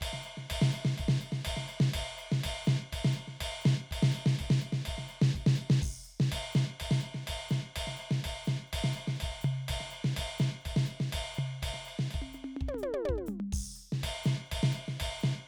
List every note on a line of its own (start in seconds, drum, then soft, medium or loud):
0.01 kick soft
0.01 ride bell loud
0.07 kick soft
0.13 snare soft
0.22 hi-hat pedal medium
0.22 ride soft
0.37 snare soft
0.50 kick soft
0.50 ride bell loud
0.57 kick soft
0.62 snare loud
0.72 hi-hat pedal medium
0.72 ride medium
0.85 snare loud
0.98 kick soft
0.98 ride bell medium
1.05 kick soft
1.05 snare loud
1.20 hi-hat pedal medium
1.20 ride medium
1.32 snare medium
1.45 kick soft
1.45 ride bell loud
1.53 kick soft
1.57 snare medium
1.68 hi-hat pedal medium
1.68 ride medium
1.80 snare loud
1.94 kick soft
1.94 ride bell loud
2.01 kick soft
2.17 hi-hat pedal medium
2.17 ride medium
2.32 snare loud
2.44 kick soft
2.44 ride bell loud
2.51 kick soft
2.64 snare loud
2.64 hi-hat pedal medium
2.92 kick soft
2.92 ride bell loud
3.05 snare loud
3.12 hi-hat pedal medium
3.12 ride soft
3.28 snare soft
3.41 kick soft
3.41 ride bell loud
3.46 kick soft
3.61 hi-hat pedal medium
3.65 snare loud
3.91 kick soft
3.91 ride bell loud
4.03 snare loud
4.11 hi-hat pedal medium
4.11 ride medium
4.26 snare loud
4.39 kick soft
4.39 ride bell medium
4.46 kick soft
4.50 snare loud
4.60 hi-hat pedal medium
4.60 ride medium
4.73 snare medium
4.85 kick soft
4.85 ride bell loud
4.93 kick soft
4.98 snare soft
5.08 hi-hat pedal medium
5.08 ride soft
5.22 snare loud
5.34 kick soft
5.34 ride medium
5.46 snare loud
5.55 hi-hat pedal medium
5.55 ride medium
5.70 snare loud
5.82 kick soft
5.82 crash medium
5.88 kick soft
6.04 hi-hat pedal medium
6.20 snare loud
6.32 kick soft
6.32 ride bell loud
6.38 kick soft
6.52 snare loud
6.52 hi-hat pedal medium
6.80 kick soft
6.80 ride bell loud
6.86 kick soft
6.91 snare loud
7.00 hi-hat pedal medium
7.00 ride soft
7.15 snare medium
7.27 kick soft
7.27 ride bell loud
7.48 snare medium
7.48 hi-hat pedal medium
7.58 snare soft
7.76 kick soft
7.76 ride bell loud
7.82 kick soft
7.87 snare soft
7.96 hi-hat pedal medium
7.96 ride soft
8.11 snare medium
8.24 kick soft
8.24 ride bell loud
8.44 snare medium
8.44 hi-hat pedal medium
8.67 hi-hat pedal soft
8.73 kick soft
8.73 ride bell loud
8.79 kick soft
8.84 snare medium
8.93 hi-hat pedal medium
8.97 ride medium
9.08 snare medium
9.15 hi-hat pedal soft
9.20 kick soft
9.20 ride bell loud
9.29 kick soft
9.41 hi-hat pedal medium
9.41 floor tom loud
9.68 kick soft
9.68 ride bell loud
9.75 kick soft
9.80 snare soft
9.90 hi-hat pedal medium
9.90 ride soft
10.04 snare medium
10.13 hi-hat pedal soft
10.13 ride bell loud
10.18 kick soft
10.38 snare loud
10.38 hi-hat pedal medium
10.60 hi-hat pedal soft
10.65 kick soft
10.65 ride bell medium
10.71 kick soft
10.76 snare loud
10.86 hi-hat pedal medium
10.86 ride soft
11.00 snare medium
11.13 kick soft
11.13 ride bell loud
11.19 kick soft
11.34 hi-hat pedal medium
11.39 floor tom loud
11.62 kick soft
11.62 ride bell loud
11.69 kick soft
11.74 snare soft
11.84 hi-hat pedal medium
11.84 ride medium
11.99 snare medium
12.11 kick soft
12.11 ride medium
12.20 kick soft
12.20 high tom medium
12.33 hi-hat pedal medium
12.33 high tom medium
12.44 high tom medium
12.57 high tom medium
12.61 kick soft
12.68 kick soft
12.68 high tom medium
12.74 hi-hat pedal medium
12.74 high tom medium
12.83 high tom loud
12.93 high tom loud
13.05 high tom loud
13.09 kick soft
13.16 kick soft
13.16 high tom medium
13.26 hi-hat pedal medium
13.26 mid tom medium
13.40 mid tom medium
13.53 kick soft
13.53 crash medium
13.59 kick soft
13.75 hi-hat pedal medium
13.92 snare medium
14.03 kick soft
14.03 ride bell loud
14.23 snare loud
14.23 hi-hat pedal medium
14.46 hi-hat pedal soft
14.52 kick soft
14.52 ride bell loud
14.58 kick soft
14.63 snare loud
14.72 hi-hat pedal medium
14.72 ride medium
14.88 snare medium
15.00 kick soft
15.00 ride bell loud
15.07 kick soft
15.19 hi-hat pedal medium
15.24 snare loud